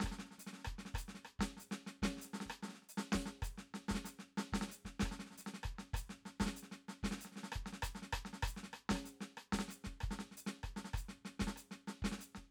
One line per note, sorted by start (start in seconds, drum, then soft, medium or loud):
0.01 kick soft
0.01 snare medium
0.07 cross-stick medium
0.12 snare soft
0.19 snare soft
0.26 snare soft
0.32 snare soft
0.39 snare soft
0.39 hi-hat pedal medium
0.47 snare soft
0.54 snare soft
0.58 snare soft
0.65 kick soft
0.65 cross-stick medium
0.79 snare soft
0.86 snare soft
0.92 kick soft
0.92 cross-stick medium
0.92 snare soft
0.99 hi-hat pedal medium
1.09 snare soft
1.15 snare soft
1.26 cross-stick soft
1.40 kick soft
1.40 snare medium
1.58 snare soft
1.58 hi-hat pedal soft
1.72 snare medium
1.87 snare soft
2.03 kick soft
2.03 snare medium
2.18 snare soft
2.22 snare soft
2.22 hi-hat pedal medium
2.34 snare soft
2.41 snare soft
2.46 kick soft
2.46 snare soft
2.51 cross-stick medium
2.63 snare soft
2.69 snare soft
2.74 snare soft
2.83 snare soft
2.90 cross-stick soft
2.90 hi-hat pedal medium
2.98 snare medium
3.13 kick soft
3.13 snare medium
3.26 snare soft
3.43 kick soft
3.43 cross-stick medium
3.43 hi-hat pedal medium
3.58 snare soft
3.75 snare soft
3.89 kick soft
3.89 snare medium
3.95 snare medium
4.05 snare soft
4.05 hi-hat pedal medium
4.20 snare soft
4.38 snare medium
4.53 kick soft
4.53 snare medium
4.62 snare medium
4.68 snare soft
4.68 hi-hat pedal medium
4.86 kick soft
4.86 snare soft
5.00 kick soft
5.00 snare medium
5.06 cross-stick soft
5.12 snare soft
5.20 snare soft
5.26 snare soft
5.31 snare soft
5.38 snare soft
5.38 hi-hat pedal medium
5.47 snare soft
5.54 snare soft
5.64 kick soft
5.64 cross-stick medium
5.79 snare soft
5.94 kick soft
5.94 cross-stick medium
5.94 hi-hat pedal medium
6.02 kick soft
6.10 snare soft
6.26 snare soft
6.41 kick soft
6.41 snare medium
6.47 snare medium
6.54 snare soft
6.54 hi-hat pedal medium
6.63 snare soft
6.72 snare soft
6.89 snare soft
7.04 kick soft
7.04 snare medium
7.12 snare soft
7.18 snare soft
7.18 hi-hat pedal medium
7.26 snare soft
7.32 snare soft
7.37 snare soft
7.44 snare soft
7.53 kick soft
7.53 cross-stick medium
7.67 snare soft
7.73 snare soft
7.83 kick soft
7.83 cross-stick medium
7.83 hi-hat pedal medium
7.96 snare soft
8.03 snare soft
8.13 kick soft
8.13 cross-stick medium
8.26 snare soft
8.34 snare soft
8.43 kick soft
8.43 cross-stick medium
8.48 hi-hat pedal medium
8.57 snare soft
8.64 snare soft
8.74 cross-stick medium
8.90 kick soft
8.90 snare medium
8.96 cross-stick medium
9.05 snare soft
9.05 hi-hat pedal soft
9.21 snare soft
9.38 cross-stick medium
9.53 kick soft
9.53 snare medium
9.60 snare medium
9.69 snare soft
9.69 hi-hat pedal medium
9.85 kick soft
9.85 snare soft
10.01 kick soft
10.01 cross-stick medium
10.12 snare soft
10.20 snare soft
10.32 snare soft
10.38 hi-hat pedal medium
10.47 snare medium
10.64 kick soft
10.64 cross-stick medium
10.77 snare soft
10.85 snare soft
10.94 kick soft
10.94 cross-stick medium
10.94 hi-hat pedal soft
11.01 kick soft
11.09 snare soft
11.26 snare soft
11.40 kick soft
11.40 snare medium
11.48 snare medium
11.57 cross-stick soft
11.57 hi-hat pedal medium
11.72 snare soft
11.88 snare soft
12.03 kick soft
12.03 snare medium
12.12 snare soft
12.19 snare soft
12.19 hi-hat pedal medium
12.36 kick soft
12.36 snare soft